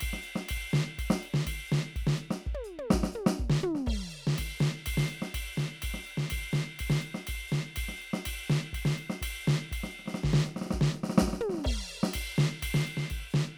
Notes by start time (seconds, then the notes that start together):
0.01 kick, ride bell
0.09 kick
0.14 snare
0.23 hi-hat pedal, ride
0.36 snare
0.49 kick, ride bell
0.57 kick
0.70 snare, hi-hat pedal
0.99 kick, ride bell
1.11 snare
1.19 hi-hat pedal
1.23 ride
1.34 snare
1.47 kick, ride bell
1.53 kick
1.67 hi-hat pedal
1.72 snare
1.79 snare
1.96 kick, ride bell
2.03 kick
2.07 snare
2.17 hi-hat pedal
2.31 snare
2.47 kick
2.53 kick, high tom
2.65 hi-hat pedal
2.79 open hi-hat, high tom
2.91 kick, snare
3.01 kick, snare
3.13 hi-hat pedal, mid tom
3.27 snare
3.40 kick
3.46 kick, snare
3.61 floor tom, hi-hat pedal
3.76 snare
3.87 kick, crash
3.94 kick
4.10 hi-hat pedal
4.28 snare
4.39 kick, ride bell
4.45 kick
4.59 snare, hi-hat pedal
4.86 kick, ride bell
4.93 kick
4.98 snare
5.07 hi-hat pedal, ride
5.23 snare
5.35 kick, ride bell
5.41 kick
5.54 snare, hi-hat pedal
5.82 kick, ride bell
5.90 kick
5.95 snare
6.03 hi-hat pedal
6.07 ride
6.18 snare
6.31 kick, ride bell
6.39 kick
6.52 snare, hi-hat pedal
6.80 kick, ride bell
6.90 snare
7.00 hi-hat pedal, ride
7.15 snare
7.27 kick, ride bell
7.35 kick
7.48 hi-hat pedal
7.53 snare
7.76 kick, ride bell
7.84 kick
7.89 snare
7.96 hi-hat pedal
8.02 ride
8.14 snare
8.26 kick, ride bell
8.45 hi-hat pedal
8.50 snare
8.73 kick, ride
8.86 snare
8.93 hi-hat pedal
8.98 ride
9.10 snare
9.22 kick, ride bell
9.42 hi-hat pedal
9.48 snare
9.72 kick, ride bell
9.84 snare
9.92 hi-hat pedal
10.00 snare
10.06 snare
10.08 snare
10.15 snare
10.24 kick, snare
10.31 kick, snare
10.45 snare, hi-hat pedal
10.57 snare
10.62 snare
10.66 snare
10.71 kick, snare
10.82 snare
10.95 snare, hi-hat pedal
11.04 snare
11.10 snare
11.16 snare
11.18 kick, snare
11.28 kick, snare
11.34 snare
11.41 hi-hat pedal, mid tom
11.50 snare
11.55 snare
11.59 snare
11.65 kick, crash
11.73 kick
11.78 kick
11.89 hi-hat pedal
12.04 snare
12.14 kick, ride bell
12.36 snare, hi-hat pedal
12.63 kick, ride bell
12.75 snare
12.83 hi-hat pedal
12.87 ride
12.98 snare
13.10 kick, ride bell
13.30 hi-hat pedal
13.35 snare